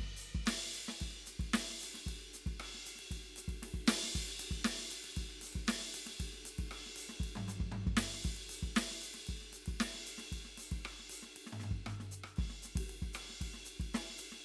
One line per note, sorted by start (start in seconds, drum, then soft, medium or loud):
0.17 hi-hat pedal medium
0.35 kick soft
0.46 snare medium
0.46 ride loud
0.64 snare soft
0.73 hi-hat pedal medium
0.88 snare medium
1.01 kick soft
1.01 ride medium
1.13 snare soft
1.26 snare soft
1.26 hi-hat pedal medium
1.26 ride medium
1.40 kick soft
1.40 ride soft
1.54 snare loud
1.54 ride medium
1.70 snare soft
1.80 hi-hat pedal medium
1.80 ride medium
1.94 snare soft
1.94 ride medium
2.07 kick soft
2.07 ride medium
2.20 snare soft
2.34 snare soft
2.34 hi-hat pedal loud
2.34 ride soft
2.46 kick soft
2.46 ride soft
2.60 cross-stick medium
2.60 ride medium
2.74 snare soft
2.86 hi-hat pedal loud
2.86 ride medium
2.96 snare soft
2.96 ride medium
3.11 kick soft
3.11 ride medium
3.23 snare soft
3.36 snare soft
3.36 hi-hat pedal loud
3.36 ride medium
3.48 kick soft
3.48 ride soft
3.63 snare soft
3.63 ride medium
3.74 kick soft
3.87 snare loud
3.87 hi-hat pedal loud
3.87 ride loud
4.03 snare soft
4.15 kick soft
4.15 ride medium
4.29 snare soft
4.29 ride soft
4.39 hi-hat pedal medium
4.39 ride medium
4.51 kick soft
4.63 snare medium
4.63 hi-hat pedal soft
4.63 ride loud
4.79 snare soft
4.90 hi-hat pedal medium
4.90 ride medium
5.02 snare soft
5.02 ride medium
5.16 kick soft
5.16 hi-hat pedal soft
5.16 ride medium
5.29 snare soft
5.42 snare soft
5.42 hi-hat pedal loud
5.42 ride medium
5.53 kick soft
5.53 ride medium
5.67 snare loud
5.67 hi-hat pedal soft
5.67 ride loud
5.81 snare soft
5.94 hi-hat pedal medium
5.94 ride medium
6.06 snare soft
6.06 ride medium
6.20 kick soft
6.20 ride medium
6.33 snare soft
6.44 snare soft
6.44 hi-hat pedal loud
6.44 ride medium
6.59 kick soft
6.59 ride medium
6.70 cross-stick medium
6.70 hi-hat pedal soft
6.70 ride medium
6.86 snare soft
6.96 hi-hat pedal loud
6.96 ride medium
7.09 snare soft
7.20 kick soft
7.20 ride medium
7.36 floor tom medium
7.36 high tom medium
7.48 hi-hat pedal medium
7.48 high tom medium
7.60 kick soft
7.72 floor tom medium
7.72 hi-hat pedal soft
7.72 high tom medium
7.87 kick medium
7.97 snare loud
7.97 hi-hat pedal medium
7.97 ride medium
8.14 snare soft
8.23 kick medium
8.23 hi-hat pedal soft
8.23 ride medium
8.37 ride medium
8.42 snare soft
8.50 hi-hat pedal medium
8.50 ride medium
8.63 kick soft
8.75 snare loud
8.75 hi-hat pedal soft
8.75 ride medium
8.91 snare soft
9.02 hi-hat pedal medium
9.02 ride medium
9.14 snare soft
9.14 ride medium
9.27 kick soft
9.27 hi-hat pedal soft
9.27 ride medium
9.42 snare soft
9.52 snare soft
9.52 hi-hat pedal medium
9.52 ride medium
9.66 kick soft
9.66 ride medium
9.79 snare medium
9.79 hi-hat pedal soft
9.79 ride medium
9.95 snare soft
10.07 hi-hat pedal medium
10.07 ride medium
10.18 snare soft
10.18 ride medium
10.31 kick soft
10.31 hi-hat pedal soft
10.31 ride medium
10.45 snare soft
10.58 snare soft
10.58 hi-hat pedal medium
10.58 ride medium
10.72 kick soft
10.72 ride medium
10.85 cross-stick medium
10.85 ride medium
11.00 snare soft
11.10 hi-hat pedal loud
11.10 ride medium
11.23 snare soft
11.36 ride medium
11.47 snare soft
11.53 floor tom medium
11.60 snare soft
11.60 floor tom medium
11.60 hi-hat pedal soft
11.71 kick soft
11.86 cross-stick medium
11.86 floor tom medium
12.00 snare soft
12.12 hi-hat pedal medium
12.24 cross-stick medium
12.36 kick medium
12.36 ride medium
12.50 snare soft
12.63 snare soft
12.63 hi-hat pedal loud
12.76 kick medium
12.76 ride medium
12.90 ride medium
13.02 kick soft
13.13 cross-stick medium
13.13 hi-hat pedal medium
13.13 ride medium
13.30 snare soft
13.41 kick soft
13.41 ride medium
13.54 snare soft
13.65 hi-hat pedal medium
13.65 ride medium
13.80 kick soft
13.80 ride soft
13.94 snare medium
13.94 ride medium
14.10 snare soft
14.18 hi-hat pedal medium
14.18 ride medium
14.32 snare soft